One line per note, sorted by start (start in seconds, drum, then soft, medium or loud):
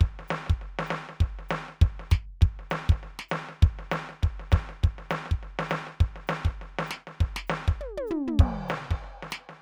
0.01 kick loud
0.01 snare soft
0.19 kick soft
0.19 snare soft
0.28 snare loud
0.28 hi-hat pedal medium
0.47 kick loud
0.47 snare soft
0.62 snare soft
0.79 snare loud
0.87 hi-hat pedal medium
0.91 snare loud
1.09 snare soft
1.21 kick loud
1.21 snare soft
1.39 snare soft
1.49 snare loud
1.49 hi-hat pedal medium
1.69 snare soft
1.82 kick loud
1.82 snare soft
2.00 snare soft
2.11 kick loud
2.11 snare loud
2.11 hi-hat pedal medium
2.41 kick loud
2.41 snare soft
2.59 snare soft
2.70 snare loud
2.70 hi-hat pedal medium
2.89 kick loud
2.89 snare soft
3.03 snare soft
3.19 snare loud
3.29 snare loud
3.29 hi-hat pedal medium
3.49 snare soft
3.63 kick loud
3.63 snare soft
3.79 snare soft
3.91 snare loud
3.91 hi-hat pedal medium
4.09 snare soft
4.23 kick medium
4.23 snare soft
4.40 snare soft
4.51 kick loud
4.51 snare loud
4.51 hi-hat pedal medium
4.69 snare soft
4.83 kick loud
4.83 snare soft
4.99 snare soft
5.10 snare loud
5.10 hi-hat pedal medium
5.26 snare soft
5.31 kick medium
5.43 snare soft
5.59 snare loud
5.70 snare loud
5.70 hi-hat pedal medium
5.87 snare soft
6.01 kick loud
6.01 snare soft
6.16 snare soft
6.27 snare loud
6.27 hi-hat pedal medium
6.45 kick medium
6.45 snare soft
6.62 snare soft
6.79 snare loud
6.87 hi-hat pedal medium
6.91 snare loud
7.07 snare medium
7.21 kick medium
7.21 snare soft
7.36 snare loud
7.47 snare loud
7.47 hi-hat pedal medium
7.68 kick loud
7.68 snare soft
7.81 high tom medium
7.97 high tom loud
8.07 floor tom loud
8.07 hi-hat pedal medium
8.27 floor tom loud
8.34 kick soft
8.39 kick loud
8.39 crash loud
8.69 snare loud
8.69 hi-hat pedal medium
8.91 kick medium
8.91 snare medium
9.04 snare soft
9.23 snare medium
9.31 snare loud
9.31 hi-hat pedal medium
9.49 snare soft